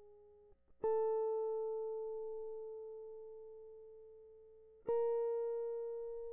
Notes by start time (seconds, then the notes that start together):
0.85 A4
4.89 A#4